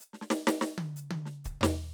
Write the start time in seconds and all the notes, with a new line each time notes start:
0.00 hi-hat pedal
0.13 snare
0.21 snare
0.30 snare
0.47 snare, hi-hat pedal
0.61 snare
0.78 high tom
0.96 hi-hat pedal
1.11 high tom
1.26 snare
1.44 kick, hi-hat pedal
1.61 snare, floor tom